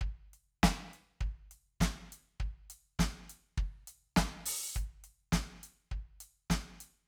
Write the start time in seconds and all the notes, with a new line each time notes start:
0.04 kick
0.33 closed hi-hat
0.63 kick, snare
0.93 closed hi-hat
1.21 kick, closed hi-hat
1.51 closed hi-hat
1.80 kick, snare
2.12 closed hi-hat
2.40 kick, closed hi-hat
2.70 closed hi-hat
2.99 kick, snare, closed hi-hat
3.30 closed hi-hat
3.57 kick, closed hi-hat, crash, ride
3.87 closed hi-hat
4.16 kick, snare
4.46 open hi-hat
4.75 kick, closed hi-hat, hi-hat pedal
5.04 closed hi-hat
5.32 kick, snare
5.63 closed hi-hat
5.91 kick
6.20 closed hi-hat
6.50 kick, snare
6.80 closed hi-hat